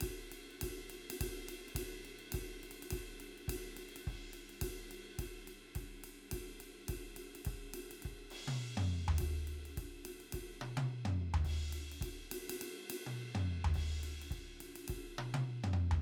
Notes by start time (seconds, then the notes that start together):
0.01 kick, ride
0.32 ride
0.51 ride
0.61 kick, ride
0.90 ride
1.10 ride
1.21 kick, ride
1.49 ride
1.68 ride
1.75 kick, ride
2.05 ride
2.19 ride
2.32 kick, ride
2.63 ride
2.71 ride
2.83 ride
2.91 kick, ride
3.20 ride
3.38 ride
3.48 kick, ride
3.77 ride
3.89 ride
3.96 ride
4.07 kick, ride
4.33 ride
4.50 ride
4.62 kick, ride
4.91 ride
5.19 kick, ride
5.48 ride
5.75 kick, ride
6.04 ride
6.32 kick, ride
6.60 ride
6.88 kick, ride
7.17 ride
7.35 ride
7.47 kick
7.74 ride
7.91 ride
8.02 kick, ride
8.31 ride
8.48 high tom
8.77 mid tom
9.08 floor tom
9.18 kick, ride
9.47 ride
9.65 ride
9.77 kick, ride
10.05 ride
10.20 ride
10.33 kick, ride
10.61 high tom
10.77 high tom
11.05 mid tom
11.34 floor tom
11.44 kick, ride
11.73 ride
11.92 ride
12.01 kick, ride
12.32 ride
12.50 ride
12.61 ride
12.90 ride
13.07 high tom
13.35 mid tom
13.65 floor tom
13.74 kick, ride
14.03 ride
14.22 ride
14.31 kick, ride
14.61 ride
14.76 ride
14.88 kick, ride
15.18 high tom
15.34 high tom
15.64 mid tom
15.73 mid tom
15.91 floor tom